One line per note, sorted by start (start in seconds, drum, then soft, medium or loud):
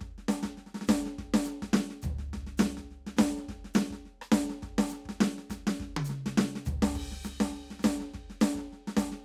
0.01 kick soft
0.01 snare soft
0.08 kick soft
0.18 snare soft
0.29 snare medium
0.29 hi-hat pedal medium
0.43 kick soft
0.43 snare medium
0.58 snare soft
0.67 snare soft
0.75 snare medium
0.81 snare medium
0.88 kick soft
0.88 snare loud
0.88 hi-hat pedal medium
1.06 snare soft
1.19 kick soft
1.19 snare soft
1.25 kick soft
1.34 snare loud
1.44 snare soft
1.44 hi-hat pedal medium
1.62 kick soft
1.62 snare medium
1.73 snare loud
1.90 snare soft
2.02 kick soft
2.02 floor tom loud
2.02 hi-hat pedal medium
2.12 kick soft
2.19 snare soft
2.33 kick soft
2.33 snare soft
2.41 kick soft
2.47 snare soft
2.58 snare loud
2.58 hi-hat pedal medium
2.77 kick soft
2.77 snare soft
2.91 snare soft
3.07 snare medium
3.18 kick soft
3.18 snare loud
3.18 hi-hat pedal medium
3.26 kick soft
3.38 snare soft
3.49 kick soft
3.49 snare soft
3.55 kick soft
3.65 snare soft
3.74 snare loud
3.74 hi-hat pedal medium
3.91 kick soft
3.91 snare soft
4.06 snare soft
4.22 cross-stick medium
4.32 kick soft
4.32 snare loud
4.32 hi-hat pedal medium
4.38 kick soft
4.50 snare soft
4.62 kick soft
4.62 snare soft
4.69 kick soft
4.73 kick soft
4.78 snare loud
4.89 snare soft
4.89 hi-hat pedal medium
5.06 kick soft
5.06 snare medium
5.21 snare loud
5.38 snare soft
5.50 kick soft
5.50 snare medium
5.50 hi-hat pedal medium
5.56 kick soft
5.67 snare loud
5.80 kick soft
5.80 snare soft
5.86 kick soft
5.91 kick soft
5.97 high tom loud
6.05 hi-hat pedal medium
6.09 snare soft
6.26 kick soft
6.26 snare medium
6.38 snare loud
6.56 snare medium
6.66 kick medium
6.66 floor tom loud
6.66 hi-hat pedal medium
6.74 kick soft
6.82 snare loud
6.95 kick medium
6.95 crash medium
7.06 kick soft
7.09 kick soft
7.09 snare soft
7.24 snare medium
7.24 hi-hat pedal medium
7.40 kick soft
7.40 snare medium
7.52 snare soft
7.60 snare soft
7.67 snare soft
7.71 snare soft
7.80 snare soft
7.80 hi-hat pedal medium
7.84 kick soft
7.84 snare loud
8.00 snare soft
8.14 kick soft
8.14 snare soft
8.21 kick soft
8.30 snare soft
8.41 snare loud
8.41 hi-hat pedal medium
8.55 kick soft
8.55 snare soft
8.73 snare soft
8.88 snare medium
8.97 kick soft
8.97 snare loud
8.97 hi-hat pedal medium
9.12 snare soft